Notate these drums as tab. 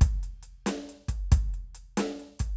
HH |xxxxxxxxxxxx|
SD |---o-----o--|
BD |o----oo----o|